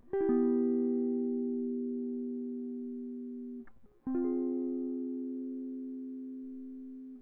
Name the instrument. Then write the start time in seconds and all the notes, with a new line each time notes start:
electric guitar
0.13 G4
0.21 E4
0.29 B3
4.07 C4
4.14 F4